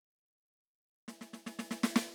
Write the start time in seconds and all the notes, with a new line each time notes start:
1.08 snare
1.21 snare
1.33 snare
1.46 snare
1.59 snare
1.71 snare
1.83 snare
1.96 snare